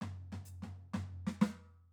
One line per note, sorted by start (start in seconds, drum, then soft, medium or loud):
0.02 snare soft
0.02 floor tom medium
0.33 snare soft
0.33 floor tom medium
0.46 hi-hat pedal soft
0.63 snare soft
0.63 floor tom soft
0.94 snare medium
0.94 floor tom medium
1.27 snare medium
1.42 snare loud